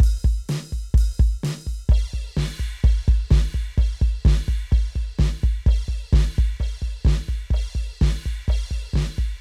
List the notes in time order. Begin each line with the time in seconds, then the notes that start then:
0.01 open hi-hat, kick
0.25 kick
0.50 open hi-hat, snare
0.73 kick
0.95 open hi-hat, kick
1.21 kick
1.45 open hi-hat, snare
1.68 kick
1.90 kick, crash
2.14 kick
2.38 kick, snare, crash
2.60 kick
2.85 kick, crash
3.09 kick
3.32 kick, snare, crash
3.55 kick
3.79 kick, crash
4.02 kick
4.26 kick, snare, crash
4.49 kick
4.72 kick, crash
4.97 kick
5.20 kick, snare, crash
5.44 kick
5.67 kick, crash
5.89 kick
6.14 kick, snare, crash
6.39 kick
6.61 kick, crash
6.83 kick
7.06 kick, snare, crash
7.29 kick
7.51 kick, crash
7.76 kick
8.02 kick, snare, crash
8.27 kick
8.49 kick, crash
8.72 kick
8.94 kick, snare, crash
9.19 kick